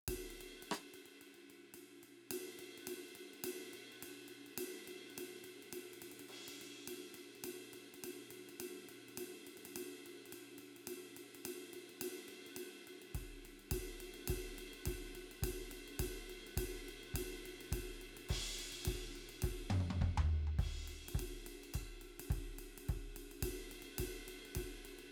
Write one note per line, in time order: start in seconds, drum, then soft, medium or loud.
0.08 kick soft
0.08 ride loud
0.16 kick soft
0.30 ride soft
0.41 ride medium
0.62 ride medium
0.71 cross-stick medium
0.71 ride medium
0.94 ride medium
1.05 ride soft
1.21 ride soft
1.34 ride soft
1.50 ride soft
1.74 ride medium
2.03 ride soft
2.31 ride loud
2.59 ride medium
2.78 ride soft
2.87 ride loud
3.08 ride soft
3.15 ride medium
3.33 ride soft
3.44 ride loud
3.73 ride medium
3.92 ride soft
4.02 ride medium
4.28 ride soft
4.46 ride soft
4.58 ride loud
4.87 ride medium
5.10 ride soft
5.18 ride loud
5.44 ride medium
5.62 ride soft
5.73 ride medium
5.93 ride soft
6.02 ride medium
6.11 ride medium
6.19 ride medium
6.28 ride medium
6.48 ride medium
6.61 ride medium
6.87 ride loud
7.14 ride medium
7.35 ride soft
7.44 ride loud
7.73 ride medium
7.94 ride medium
8.04 ride loud
8.30 ride medium
8.49 ride soft
8.60 ride loud
8.89 ride medium
9.08 ride soft
9.17 ride loud
9.47 ride medium
9.57 ride soft
9.65 ride medium
9.76 ride loud
10.06 ride medium
10.25 ride soft
10.32 ride medium
10.58 ride medium
10.76 ride soft
10.87 ride loud
11.16 ride medium
11.35 ride medium
11.45 ride loud
11.73 ride medium
11.89 ride soft
12.01 ride loud
12.28 ride soft
12.46 ride soft
12.56 ride medium
12.87 ride soft
13.02 ride soft
13.14 kick soft
13.14 ride medium
13.45 ride soft
13.59 ride soft
13.71 kick medium
13.71 ride loud
14.00 ride medium
14.14 ride soft
14.27 kick medium
14.27 ride loud
14.58 ride medium
14.73 ride soft
14.85 kick medium
14.85 ride loud
15.15 ride medium
15.31 ride medium
15.42 kick medium
15.42 ride loud
15.71 ride medium
15.88 ride soft
15.99 kick medium
15.99 ride loud
16.30 ride medium
16.47 ride soft
16.57 kick medium
16.57 ride loud
16.88 ride medium
17.03 ride soft
17.14 kick soft
17.14 ride loud
17.45 ride medium
17.61 ride medium
17.72 kick medium
17.72 ride loud
18.01 ride soft
18.17 ride medium
18.29 kick medium
18.29 ride loud
18.59 ride medium
18.72 ride medium
18.85 kick medium
18.85 ride loud
19.15 ride soft
19.29 ride medium
19.42 kick medium
19.42 ride loud
19.70 mid tom loud
19.90 mid tom loud
20.01 kick medium
20.01 mid tom medium
20.17 floor tom loud
20.47 floor tom soft
20.58 kick medium
20.58 ride medium
20.87 ride medium
21.08 ride medium
21.15 kick medium
21.19 ride medium
21.46 ride medium
21.63 ride bell soft
21.74 kick medium
21.74 ride bell medium
22.01 ride medium
22.19 ride medium
22.30 kick medium
22.30 ride medium
22.58 ride medium
22.78 ride medium
22.88 kick medium
22.88 ride medium
23.16 ride medium
23.31 ride medium
23.42 kick medium
23.42 ride loud
23.71 ride medium
23.82 ride medium
23.98 kick soft
23.98 ride loud
24.28 ride medium
24.45 ride soft
24.55 kick soft
24.55 ride loud
24.85 ride medium
24.99 ride soft